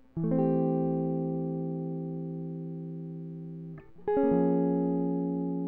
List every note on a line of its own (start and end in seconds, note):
0.18 3.84 E3
0.25 2.81 A3
0.32 3.67 C4
0.39 3.87 G4
4.08 5.68 G#4
4.17 5.68 C#4
4.24 5.68 A#3
4.33 5.68 F3